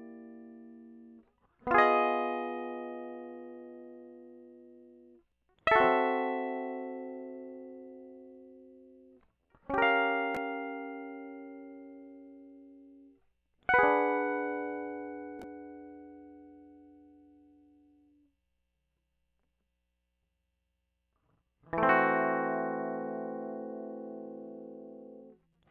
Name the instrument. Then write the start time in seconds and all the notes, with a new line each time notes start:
electric guitar
1.68 B3 F4
1.75 G#4 D#5
5.68 E5
5.72 A4
5.76 F#4
5.81 C4
9.71 C#4
9.75 G4
9.79 A#4
9.83 F5
13.70 F#5
13.75 B4
13.79 G#4
13.84 D4
21.68 E3
21.74 E3
21.79 A3
21.84 C4
21.90 F#4